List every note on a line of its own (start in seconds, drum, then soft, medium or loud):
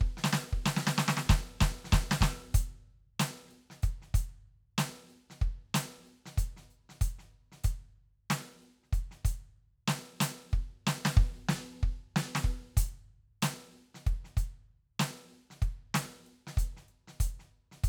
0.01 kick medium
0.17 snare medium
0.24 snare loud
0.33 snare loud
0.53 kick medium
0.66 snare loud
0.77 snare loud
0.87 snare loud
0.98 snare loud
1.08 snare loud
1.17 snare loud
1.26 kick soft
1.26 snare loud
1.30 kick loud
1.61 kick medium
1.61 snare loud
1.85 snare medium
1.89 snare soft
1.93 kick loud
1.93 snare loud
2.11 snare loud
2.21 kick medium
2.21 snare loud
2.55 closed hi-hat loud
2.55 kick medium
3.20 closed hi-hat loud
3.20 snare loud
3.47 snare soft
3.51 closed hi-hat soft
3.70 snare soft
3.83 closed hi-hat medium
3.83 kick medium
4.02 snare soft
4.14 closed hi-hat medium
4.14 kick medium
4.78 closed hi-hat medium
4.78 snare loud
5.11 closed hi-hat soft
5.30 snare soft
5.42 kick medium
5.42 closed hi-hat soft
5.74 closed hi-hat loud
5.74 snare loud
6.02 cross-stick soft
6.07 closed hi-hat soft
6.26 snare medium
6.38 closed hi-hat medium
6.38 kick medium
6.57 snare soft
6.70 closed hi-hat soft
6.89 snare soft
7.01 closed hi-hat medium
7.01 kick medium
7.19 snare soft
7.25 snare soft
7.32 closed hi-hat soft
7.52 snare soft
7.64 closed hi-hat medium
7.64 kick medium
8.30 closed hi-hat medium
8.30 snare loud
8.62 closed hi-hat soft
8.83 snare soft
8.93 closed hi-hat soft
8.93 kick medium
9.11 snare soft
9.25 closed hi-hat medium
9.25 kick medium
9.88 snare loud
10.21 closed hi-hat loud
10.21 snare loud
10.52 kick medium
10.52 hi-hat pedal soft
10.87 snare loud
11.05 snare loud
11.17 kick loud
11.49 snare loud
11.83 kick medium
12.16 snare loud
12.35 snare loud
12.44 kick medium
12.77 closed hi-hat loud
12.77 kick medium
13.42 closed hi-hat loud
13.42 snare loud
13.95 snare soft
14.07 kick medium
14.07 closed hi-hat soft
14.25 snare soft
14.37 closed hi-hat medium
14.37 kick medium
15.00 closed hi-hat medium
15.00 snare loud
15.51 snare soft
15.62 kick medium
15.62 closed hi-hat soft
15.95 closed hi-hat medium
15.95 snare loud
16.27 closed hi-hat soft
16.47 snare medium
16.57 closed hi-hat medium
16.57 kick medium
16.77 snare soft
16.89 closed hi-hat soft
17.08 snare soft
17.20 closed hi-hat loud
17.20 kick medium
17.40 snare soft
17.72 snare soft
17.84 closed hi-hat medium
17.84 kick medium